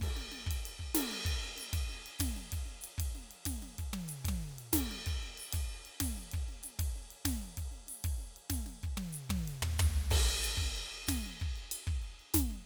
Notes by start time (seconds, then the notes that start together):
0.01 kick, ride
0.16 snare
0.31 snare
0.46 kick
0.51 ride
0.65 ride
0.79 kick
0.94 snare, ride
1.11 snare
1.25 kick, ride
1.41 snare
1.56 snare, hi-hat pedal, ride
1.73 kick, ride
1.89 snare
2.06 ride
2.19 kick, snare, hi-hat pedal, ride
2.36 snare
2.52 kick, ride
2.65 snare
2.81 hi-hat pedal, ride
2.98 kick, ride
3.15 snare
3.31 ride
3.45 kick, snare, hi-hat pedal, ride
3.62 snare
3.78 kick, ride
3.93 high tom
4.08 hi-hat pedal, ride
4.24 kick, high tom, ride
4.29 closed hi-hat
4.58 ride
4.72 kick, snare, hi-hat pedal, ride
4.91 snare
5.06 kick, ride
5.22 snare
5.37 hi-hat pedal, ride
5.52 kick, ride
5.85 ride
6.00 kick, snare, hi-hat pedal, ride
6.17 snare
6.31 kick, ride
6.48 snare
6.63 snare, hi-hat pedal, ride
6.79 kick, ride
6.95 snare
7.10 ride
7.25 kick, snare, hi-hat pedal, ride
7.44 snare
7.57 kick, ride
7.71 snare
7.87 snare, hi-hat pedal, ride
8.04 kick, ride
8.18 snare
8.36 ride
8.50 kick, snare, hi-hat pedal, ride
8.66 snare
8.83 kick, ride
8.97 high tom
9.12 hi-hat pedal, ride
9.29 kick, closed hi-hat, high tom
9.47 ride
9.62 floor tom
9.78 kick, floor tom, hi-hat pedal
10.10 kick, crash, ride
10.42 hi-hat pedal, ride bell
10.57 kick
10.62 snare
10.75 ride
10.92 ride
11.07 kick, snare, hi-hat pedal, ride bell
11.26 snare
11.40 kick, ride
11.56 ride
11.71 hi-hat pedal, ride bell
11.87 kick, snare
12.02 ride
12.19 ride
12.34 kick, snare, hi-hat pedal, ride bell
12.51 snare